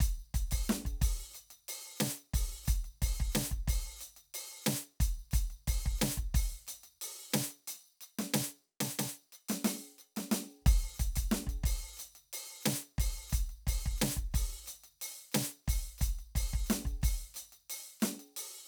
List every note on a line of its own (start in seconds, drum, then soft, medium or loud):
0.01 closed hi-hat loud
0.01 kick medium
0.35 kick medium
0.35 percussion loud
0.52 kick medium
0.52 percussion loud
0.68 snare loud
0.68 hi-hat pedal medium
0.86 kick soft
0.86 closed hi-hat medium
1.02 kick medium
1.02 percussion loud
1.34 closed hi-hat medium
1.34 hi-hat pedal soft
1.51 closed hi-hat medium
1.69 percussion loud
1.98 closed hi-hat loud
1.98 snare loud
1.98 hi-hat pedal medium
2.18 closed hi-hat medium
2.34 kick medium
2.34 percussion loud
2.66 closed hi-hat loud
2.66 kick medium
2.66 hi-hat pedal medium
2.85 closed hi-hat soft
3.03 kick medium
3.03 percussion loud
3.21 kick medium
3.33 closed hi-hat loud
3.33 snare loud
3.33 hi-hat pedal medium
3.52 kick soft
3.52 closed hi-hat medium
3.68 kick medium
3.68 percussion loud
4.00 closed hi-hat medium
4.00 hi-hat pedal medium
4.17 closed hi-hat medium
4.35 percussion loud
4.65 closed hi-hat loud
4.65 snare loud
4.65 hi-hat pedal soft
4.83 closed hi-hat soft
5.01 kick medium
5.01 percussion loud
5.32 closed hi-hat loud
5.32 kick medium
5.32 hi-hat pedal medium
5.51 closed hi-hat soft
5.68 kick medium
5.68 percussion loud
5.86 kick medium
5.99 closed hi-hat loud
5.99 snare loud
5.99 hi-hat pedal medium
6.18 kick soft
6.18 closed hi-hat medium
6.35 kick medium
6.35 percussion loud
6.68 closed hi-hat loud
6.68 hi-hat pedal medium
6.84 closed hi-hat medium
7.02 percussion loud
7.33 closed hi-hat loud
7.33 snare loud
7.33 hi-hat pedal medium
7.51 closed hi-hat medium
7.68 percussion loud
8.02 hi-hat pedal medium
8.19 snare loud
8.19 closed hi-hat loud
8.34 closed hi-hat loud
8.34 snare loud
8.81 closed hi-hat loud
8.81 snare loud
8.99 closed hi-hat loud
8.99 snare loud
9.33 hi-hat pedal medium
9.49 closed hi-hat loud
9.49 snare loud
9.65 snare loud
9.65 percussion loud
9.99 hi-hat pedal medium
10.17 snare medium
10.17 closed hi-hat loud
10.32 snare loud
10.32 percussion loud
10.63 kick soft
10.67 kick loud
10.67 percussion loud
10.97 closed hi-hat loud
10.97 kick medium
10.97 hi-hat pedal soft
11.16 closed hi-hat loud
11.16 kick medium
11.32 snare loud
11.47 kick soft
11.47 closed hi-hat medium
11.64 kick medium
11.64 percussion loud
11.98 closed hi-hat loud
11.98 hi-hat pedal medium
12.16 closed hi-hat medium
12.34 percussion loud
12.63 closed hi-hat loud
12.63 snare loud
12.63 hi-hat pedal medium
12.83 closed hi-hat soft
12.99 kick medium
12.99 percussion loud
13.30 closed hi-hat loud
13.30 kick medium
13.30 hi-hat pedal medium
13.50 closed hi-hat soft
13.68 kick medium
13.68 percussion loud
13.86 kick medium
13.99 closed hi-hat loud
13.99 snare loud
13.99 hi-hat pedal medium
14.17 kick soft
14.17 closed hi-hat medium
14.32 kick medium
14.32 hi-hat pedal soft
14.32 percussion loud
14.67 closed hi-hat loud
14.67 hi-hat pedal medium
14.84 closed hi-hat medium
15.00 hi-hat pedal soft
15.00 percussion loud
15.33 closed hi-hat loud
15.33 snare loud
15.33 hi-hat pedal medium
15.52 closed hi-hat soft
15.67 kick medium
15.67 hi-hat pedal soft
15.67 percussion loud
15.99 closed hi-hat loud
15.99 kick medium
15.99 hi-hat pedal medium
16.19 closed hi-hat soft
16.36 kick medium
16.36 percussion loud
16.54 kick medium
16.67 closed hi-hat loud
16.67 snare loud
16.67 hi-hat pedal medium
16.86 kick soft
16.86 closed hi-hat medium
17.02 kick medium
17.02 hi-hat pedal soft
17.02 percussion loud
17.35 closed hi-hat loud
17.35 hi-hat pedal medium
17.53 closed hi-hat medium
17.70 percussion loud
18.01 closed hi-hat loud
18.01 snare loud
18.01 hi-hat pedal medium
18.20 closed hi-hat medium
18.37 percussion loud